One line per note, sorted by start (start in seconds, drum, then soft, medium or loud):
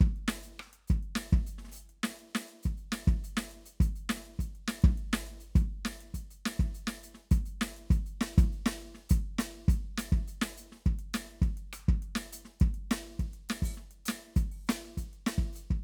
0.01 kick loud
0.01 closed hi-hat soft
0.17 closed hi-hat soft
0.29 snare loud
0.37 snare soft
0.44 closed hi-hat soft
0.60 cross-stick medium
0.68 snare soft
0.74 closed hi-hat soft
0.88 closed hi-hat soft
0.88 kick medium
1.03 closed hi-hat soft
1.16 snare loud
1.32 kick loud
1.32 closed hi-hat soft
1.47 closed hi-hat soft
1.59 snare soft
1.65 snare soft
1.69 snare soft
1.72 snare soft
1.72 hi-hat pedal medium
1.76 closed hi-hat medium
1.90 closed hi-hat soft
2.04 snare loud
2.11 snare soft
2.20 closed hi-hat soft
2.36 snare loud
2.49 snare soft
2.49 closed hi-hat soft
2.63 closed hi-hat soft
2.63 kick medium
2.78 closed hi-hat soft
2.93 snare loud
3.08 kick loud
3.08 closed hi-hat soft
3.25 closed hi-hat soft
3.37 snare loud
3.52 closed hi-hat soft
3.66 closed hi-hat soft
3.81 closed hi-hat medium
3.81 kick loud
3.96 closed hi-hat soft
4.10 snare loud
4.18 snare soft
4.26 closed hi-hat soft
4.40 closed hi-hat soft
4.40 kick medium
4.56 closed hi-hat soft
4.68 snare loud
4.83 kick loud
4.83 closed hi-hat soft
4.98 closed hi-hat soft
5.14 snare loud
5.27 closed hi-hat soft
5.41 closed hi-hat soft
5.56 closed hi-hat soft
5.56 kick loud
5.71 closed hi-hat soft
5.86 snare medium
5.94 snare soft
6.01 closed hi-hat soft
6.15 closed hi-hat soft
6.15 kick medium
6.31 closed hi-hat soft
6.46 snare loud
6.60 kick medium
6.60 snare soft
6.60 closed hi-hat soft
6.75 closed hi-hat soft
6.88 snare medium
7.04 closed hi-hat soft
7.15 snare soft
7.32 closed hi-hat medium
7.32 kick loud
7.46 closed hi-hat soft
7.62 snare loud
7.77 closed hi-hat soft
7.91 closed hi-hat soft
7.91 kick loud
8.07 closed hi-hat soft
8.22 snare loud
8.38 closed hi-hat soft
8.38 kick loud
8.53 closed hi-hat soft
8.67 snare loud
8.75 snare soft
8.81 closed hi-hat soft
8.95 snare soft
8.99 snare soft
9.10 closed hi-hat medium
9.10 kick loud
9.39 closed hi-hat medium
9.39 snare loud
9.69 closed hi-hat medium
9.69 kick loud
9.98 closed hi-hat medium
9.98 snare medium
10.13 kick medium
10.28 closed hi-hat soft
10.42 snare loud
10.58 closed hi-hat medium
10.73 snare soft
10.76 snare soft
10.87 kick medium
10.87 closed hi-hat soft
10.99 closed hi-hat soft
11.14 closed hi-hat medium
11.14 snare loud
11.26 snare soft
11.42 kick medium
11.42 closed hi-hat soft
11.58 closed hi-hat soft
11.74 closed hi-hat medium
11.74 cross-stick medium
11.89 kick loud
12.03 closed hi-hat soft
12.16 snare loud
12.16 closed hi-hat soft
12.31 closed hi-hat medium
12.31 snare soft
12.46 snare soft
12.61 kick loud
12.61 closed hi-hat medium
12.75 closed hi-hat soft
12.92 closed hi-hat medium
12.92 snare loud
13.06 snare soft
13.20 kick medium
13.20 closed hi-hat soft
13.34 closed hi-hat soft
13.50 snare loud
13.50 closed hi-hat medium
13.63 open hi-hat medium
13.63 kick medium
13.74 snare soft
13.74 hi-hat pedal medium
13.92 closed hi-hat soft
14.06 closed hi-hat medium
14.06 snare loud
14.37 closed hi-hat medium
14.37 kick medium
14.37 snare soft
14.52 open hi-hat soft
14.68 closed hi-hat medium
14.68 snare loud
14.68 hi-hat pedal soft
14.85 cross-stick soft
14.98 closed hi-hat soft
14.98 kick medium
15.14 closed hi-hat soft
15.27 closed hi-hat medium
15.27 snare loud
15.39 kick medium
15.53 closed hi-hat soft
15.53 hi-hat pedal soft
15.71 kick medium